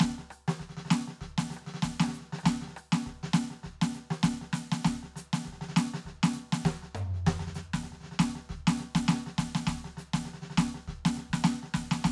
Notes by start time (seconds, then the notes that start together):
0.01 kick, snare
0.19 snare
0.31 cross-stick, hi-hat pedal
0.49 snare
0.60 kick, snare
0.70 snare
0.78 snare
0.86 snare
0.91 snare, hi-hat pedal
1.08 snare
1.22 kick, snare
1.28 kick
1.39 snare
1.51 snare, hi-hat pedal
1.57 cross-stick
1.63 snare
1.67 snare
1.75 snare
1.83 kick, snare
2.01 snare
2.05 cross-stick, snare
2.12 snare, hi-hat pedal
2.16 snare
2.19 snare
2.21 snare
2.24 snare
2.27 snare
2.33 snare
2.40 cross-stick
2.44 kick, snare
2.46 snare
2.63 snare
2.69 snare
2.74 cross-stick, snare
2.78 hi-hat pedal
2.93 snare
3.07 kick, snare
3.24 snare
3.34 snare, hi-hat pedal
3.51 snare
3.64 kick, snare
3.82 snare
3.94 snare, hi-hat pedal
4.11 snare
4.24 kick, snare
4.42 snare
4.54 snare, hi-hat pedal
4.73 snare
4.86 kick, snare
5.04 snare
5.17 kick, snare, hi-hat pedal
5.34 snare
5.46 kick, snare
5.53 snare
5.62 snare
5.70 snare
5.75 kick, snare, hi-hat pedal
5.95 snare
6.06 kick, snare
6.24 snare
6.34 snare, hi-hat pedal
6.53 snare
6.65 kick, snare
6.71 kick
6.84 snare
6.96 floor tom, hi-hat pedal
7.15 snare
7.28 kick, snare
7.34 kick
7.39 kick, snare
7.48 kick, snare
7.55 snare, hi-hat pedal
7.74 kick, snare
7.84 snare
7.93 snare
8.01 snare
8.04 snare
8.12 snare
8.20 kick, snare, hi-hat pedal
8.36 snare
8.50 kick, snare
8.58 kick
8.61 kick
8.68 snare
8.79 snare, hi-hat pedal
8.96 kick, snare
9.09 snare
9.13 snare
9.27 snare
9.39 kick, snare, hi-hat pedal
9.56 snare
9.68 kick, snare
9.75 kick
9.85 snare
9.98 snare, hi-hat pedal
10.14 kick, snare
10.26 snare
10.34 snare
10.42 snare
10.51 snare
10.58 kick, snare, hi-hat pedal
10.75 snare
10.89 kick, snare
10.95 kick
10.98 kick
11.06 snare
11.14 snare, hi-hat pedal
11.31 kick, snare
11.45 snare
11.64 snare
11.75 kick, snare, hi-hat pedal
11.92 snare
12.05 kick, snare